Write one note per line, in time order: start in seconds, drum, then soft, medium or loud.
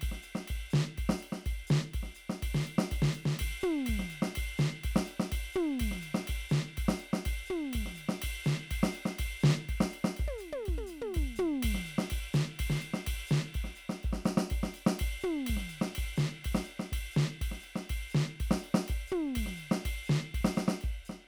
0.01 kick soft
0.01 ride bell medium
0.09 kick soft
0.09 snare soft
0.22 hi-hat pedal medium
0.22 ride soft
0.35 snare medium
0.47 kick soft
0.47 ride bell medium
0.56 kick soft
0.70 snare loud
0.70 hi-hat pedal medium
0.98 kick soft
0.98 ride bell medium
1.04 kick soft
1.09 snare medium
1.18 hi-hat pedal medium
1.22 ride soft
1.32 snare medium
1.46 kick soft
1.46 ride bell medium
1.52 kick soft
1.67 snare loud
1.67 hi-hat pedal medium
1.88 hi-hat pedal soft
1.93 kick soft
1.93 ride medium
2.00 kick soft
2.00 snare soft
2.15 hi-hat pedal medium
2.15 ride soft
2.30 snare medium
2.42 kick soft
2.42 ride bell medium
2.48 kick soft
2.55 snare medium
2.63 hi-hat pedal medium
2.63 ride soft
2.78 snare medium
2.91 kick soft
2.91 ride bell medium
2.97 kick soft
3.02 snare loud
3.13 hi-hat pedal medium
3.13 ride soft
3.25 snare medium
3.39 kick soft
3.39 ride bell loud
3.47 kick soft
3.61 hi-hat pedal medium
3.61 floor tom loud
3.86 kick soft
3.86 ride bell medium
3.95 kick soft
3.99 snare soft
4.10 hi-hat pedal medium
4.10 ride soft
4.22 snare medium
4.35 kick soft
4.35 ride bell loud
4.43 kick soft
4.58 snare loud
4.58 hi-hat pedal medium
4.83 kick soft
4.83 ride bell medium
4.91 kick soft
4.96 snare medium
5.05 hi-hat pedal medium
5.05 ride soft
5.20 snare medium
5.32 kick soft
5.32 ride bell medium
5.38 kick soft
5.52 floor tom loud
5.52 hi-hat pedal medium
5.79 kick soft
5.79 ride bell loud
5.87 kick soft
5.91 snare soft
6.01 hi-hat pedal medium
6.01 ride soft
6.14 snare medium
6.27 kick soft
6.27 ride bell medium
6.35 kick soft
6.49 snare loud
6.49 hi-hat pedal medium
6.77 kick soft
6.77 ride bell medium
6.84 kick soft
6.88 snare medium
6.97 hi-hat pedal medium
6.97 ride soft
7.13 snare medium
7.25 kick soft
7.25 ride bell medium
7.33 kick soft
7.46 floor tom loud
7.46 hi-hat pedal medium
7.73 kick soft
7.73 ride bell medium
7.81 kick soft
7.86 snare soft
7.95 hi-hat pedal medium
7.95 ride soft
8.09 snare medium
8.22 kick soft
8.22 ride bell loud
8.44 snare medium
8.44 hi-hat pedal medium
8.71 kick soft
8.71 ride bell medium
8.77 kick soft
8.83 snare medium
8.92 hi-hat pedal medium
8.92 ride soft
9.05 snare medium
9.19 kick soft
9.19 ride bell loud
9.26 kick soft
9.40 snare loud
9.40 hi-hat pedal medium
9.50 snare soft
9.69 kick soft
9.69 ride bell medium
9.75 kick soft
9.80 snare medium
9.90 hi-hat pedal medium
9.90 ride medium
10.04 snare medium
10.16 kick soft
10.16 ride bell medium
10.26 kick soft
10.26 high tom medium
10.38 hi-hat pedal medium
10.38 ride bell soft
10.52 closed hi-hat soft
10.52 high tom medium
10.65 kick soft
10.65 ride bell medium
10.74 kick soft
10.74 mid tom medium
10.87 hi-hat pedal medium
10.87 ride bell soft
11.01 mid tom medium
11.14 kick soft
11.14 ride medium
11.23 kick soft
11.36 hi-hat pedal medium
11.36 floor tom loud
11.62 kick soft
11.62 ride bell loud
11.71 kick soft
11.71 snare soft
11.86 hi-hat pedal medium
11.86 ride soft
11.98 snare medium
12.10 kick soft
12.10 ride bell medium
12.18 kick soft
12.33 snare loud
12.33 hi-hat pedal medium
12.54 hi-hat pedal soft
12.59 kick soft
12.59 ride loud
12.66 kick soft
12.66 snare medium
12.80 hi-hat pedal medium
12.80 ride soft
12.94 snare medium
13.06 kick soft
13.06 ride loud
13.13 kick soft
13.27 hi-hat pedal medium
13.31 snare loud
13.48 hi-hat pedal soft
13.54 kick soft
13.54 ride bell medium
13.61 kick soft
13.61 snare soft
13.75 hi-hat pedal medium
13.75 ride soft
13.89 snare medium
14.03 kick soft
14.03 ride bell soft
14.11 kick soft
14.11 snare medium
14.25 snare medium
14.25 hi-hat pedal medium
14.37 snare medium
14.50 kick soft
14.50 ride medium
14.58 kick soft
14.63 snare medium
14.74 hi-hat pedal medium
14.74 ride medium
14.86 snare loud
14.99 kick soft
14.99 ride loud
15.07 kick soft
15.21 hi-hat pedal medium
15.21 floor tom loud
15.46 kick soft
15.46 ride loud
15.56 kick soft
15.56 snare soft
15.69 hi-hat pedal medium
15.69 ride soft
15.81 snare medium
15.95 kick soft
15.95 ride loud
16.04 kick soft
16.16 snare medium
16.16 hi-hat pedal medium
16.44 kick soft
16.44 ride medium
16.52 kick soft
16.52 snare medium
16.64 hi-hat pedal medium
16.68 ride soft
16.79 snare medium
16.92 kick soft
16.92 ride medium
16.98 kick soft
17.12 hi-hat pedal medium
17.16 snare loud
17.41 kick soft
17.41 ride medium
17.47 kick soft
17.52 snare soft
17.61 hi-hat pedal medium
17.61 ride soft
17.76 snare medium
17.89 kick soft
17.89 ride medium
17.96 kick soft
18.10 hi-hat pedal medium
18.15 snare loud
18.40 kick soft
18.40 ride medium
18.46 kick soft
18.51 snare medium
18.58 hi-hat pedal medium
18.64 ride soft
18.74 snare loud
18.88 kick soft
18.88 ride medium
18.96 kick soft
19.07 floor tom loud
19.07 hi-hat pedal medium
19.35 kick soft
19.35 ride loud
19.43 kick soft
19.43 snare soft
19.56 hi-hat pedal medium
19.56 ride soft
19.71 snare medium
19.85 kick soft
19.85 ride medium
19.91 kick soft
20.05 hi-hat pedal medium
20.09 snare loud
20.34 kick soft
20.34 ride medium
20.40 kick soft
20.45 snare medium
20.55 snare medium
20.55 hi-hat pedal medium
20.68 snare medium
20.81 kick soft
20.81 ride soft
20.90 kick soft
21.05 hi-hat pedal medium
21.09 snare soft